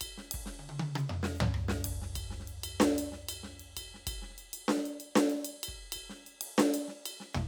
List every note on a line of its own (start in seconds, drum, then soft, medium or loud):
0.01 kick soft
0.01 ride bell loud
0.18 snare soft
0.31 kick soft
0.31 ride loud
0.46 snare soft
0.59 high tom soft
0.80 high tom loud
0.96 hi-hat pedal soft
0.96 high tom medium
1.10 mid tom loud
1.23 snare medium
1.35 hi-hat pedal soft
1.40 floor tom loud
1.54 cross-stick medium
1.69 snare medium
1.84 kick soft
1.84 ride loud
1.93 kick soft
2.02 snare soft
2.16 kick soft
2.16 ride bell loud
2.31 snare soft
2.40 snare soft
2.48 ride medium
2.64 ride bell loud
2.80 snare loud
2.98 ride bell medium
3.12 snare soft
3.29 hi-hat pedal medium
3.29 ride bell loud
3.43 snare soft
3.59 kick soft
3.59 ride medium
3.77 kick soft
3.77 ride bell loud
3.94 snare soft
4.07 kick soft
4.07 ride bell loud
4.12 kick soft
4.22 snare soft
4.30 snare soft
4.36 snare soft
4.36 ride bell medium
4.53 ride bell medium
4.68 snare medium
4.77 snare soft
4.86 ride bell medium
5.00 ride bell medium
5.16 snare loud
5.28 hi-hat pedal soft
5.28 ride medium
5.45 ride bell loud
5.63 ride bell loud
5.68 kick soft
5.92 kick soft
5.92 ride bell loud
6.10 snare soft
6.24 snare soft
6.24 ride bell soft
6.41 ride loud
6.58 snare loud
6.74 ride bell medium
6.88 snare soft
7.06 hi-hat pedal soft
7.06 ride bell loud
7.20 snare soft
7.33 kick soft
7.33 hi-hat pedal soft
7.33 mid tom loud
7.42 kick soft